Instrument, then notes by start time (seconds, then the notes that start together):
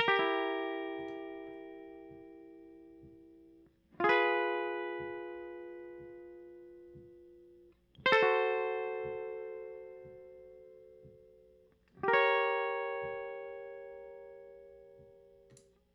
electric guitar
0.00 A#4
0.08 G4
0.19 E4
4.00 F4 G#4
4.09 B4
8.06 C5
8.13 A4
8.23 F#4
11.98 F#4
12.04 G4
12.08 A#4
12.14 C#5